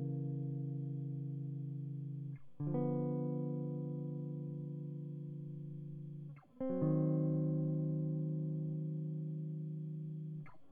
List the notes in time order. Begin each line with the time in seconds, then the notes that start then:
2.61 D3
2.67 F3
2.75 B3
6.61 C4
6.70 F#3
6.83 D#3